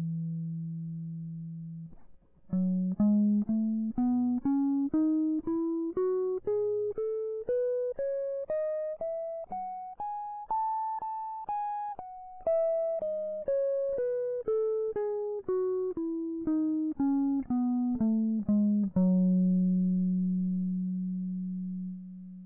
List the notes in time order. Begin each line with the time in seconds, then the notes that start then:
2.54 F#3
3.00 G#3
3.49 A3
3.98 B3
4.45 C#4
4.94 D#4
5.47 E4
5.97 F#4
6.47 G#4
6.98 A4
7.49 B4
7.99 C#5
8.50 D#5
9.01 E5
9.52 F#5
10.00 G#5
10.50 A5
11.02 A5
11.48 G#5
11.99 F#5
12.47 E5
13.02 D#5
13.48 C#5
13.98 B4
14.48 A4
14.96 G#4
15.48 F#4
15.97 E4
16.47 D#4
17.00 C#4
17.51 B3
18.01 A3
18.49 G#3
18.97 F#3